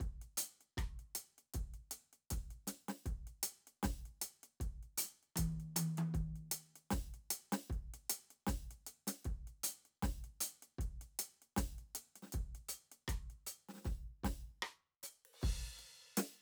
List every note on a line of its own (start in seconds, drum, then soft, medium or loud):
0.01 kick medium
0.01 closed hi-hat soft
0.22 closed hi-hat soft
0.38 closed hi-hat loud
0.62 closed hi-hat soft
0.78 kick medium
0.78 cross-stick medium
0.78 closed hi-hat soft
1.00 closed hi-hat soft
1.16 closed hi-hat medium
1.39 closed hi-hat soft
1.54 kick medium
1.54 closed hi-hat medium
1.75 closed hi-hat soft
1.92 closed hi-hat medium
2.14 closed hi-hat soft
2.31 kick medium
2.31 snare soft
2.31 closed hi-hat medium
2.51 closed hi-hat soft
2.68 snare soft
2.68 closed hi-hat medium
2.89 snare medium
2.89 closed hi-hat soft
3.06 kick medium
3.06 closed hi-hat soft
3.28 closed hi-hat soft
3.44 closed hi-hat loud
3.68 closed hi-hat soft
3.84 kick medium
3.84 snare medium
3.84 closed hi-hat medium
4.06 closed hi-hat soft
4.22 closed hi-hat loud
4.44 closed hi-hat soft
4.61 kick medium
4.61 closed hi-hat soft
4.83 closed hi-hat soft
4.98 closed hi-hat loud
5.24 closed hi-hat soft
5.37 kick medium
5.37 closed hi-hat loud
5.37 high tom medium
5.61 closed hi-hat soft
5.77 closed hi-hat loud
5.77 high tom medium
5.98 closed hi-hat soft
5.98 high tom medium
6.15 kick medium
6.15 closed hi-hat soft
6.36 closed hi-hat soft
6.52 closed hi-hat loud
6.76 closed hi-hat soft
6.91 kick medium
6.91 snare medium
6.91 closed hi-hat medium
7.15 closed hi-hat soft
7.31 closed hi-hat loud
7.53 snare medium
7.53 closed hi-hat medium
7.71 kick medium
7.71 closed hi-hat soft
7.95 closed hi-hat soft
8.10 closed hi-hat loud
8.31 closed hi-hat soft
8.47 kick medium
8.47 snare medium
8.47 closed hi-hat medium
8.71 closed hi-hat soft
8.87 closed hi-hat medium
9.08 snare medium
9.08 closed hi-hat medium
9.25 kick medium
9.25 closed hi-hat soft
9.48 closed hi-hat soft
9.64 closed hi-hat loud
9.86 closed hi-hat soft
10.03 kick medium
10.03 snare medium
10.03 closed hi-hat soft
10.25 closed hi-hat soft
10.41 closed hi-hat loud
10.63 closed hi-hat soft
10.79 kick medium
10.79 closed hi-hat soft
11.02 closed hi-hat soft
11.20 closed hi-hat loud
11.43 closed hi-hat soft
11.57 kick medium
11.57 snare medium
11.57 closed hi-hat medium
11.79 closed hi-hat soft
11.96 closed hi-hat medium
12.16 snare soft
12.16 closed hi-hat soft
12.23 snare soft
12.26 snare soft
12.33 kick medium
12.33 closed hi-hat medium
12.56 closed hi-hat soft
12.69 closed hi-hat medium
12.92 closed hi-hat soft
13.09 kick medium
13.09 cross-stick medium
13.09 closed hi-hat medium
13.31 closed hi-hat soft
13.47 closed hi-hat medium
13.69 snare soft
13.75 snare soft
13.78 snare soft
13.82 snare soft
13.85 kick medium
13.85 snare soft
14.24 kick medium
14.24 snare medium
14.24 ride soft
14.63 cross-stick medium
15.04 hi-hat pedal medium
15.26 crash soft
15.34 crash soft
15.42 kick medium
15.42 crash medium
15.79 closed hi-hat soft
16.18 snare medium
16.18 closed hi-hat loud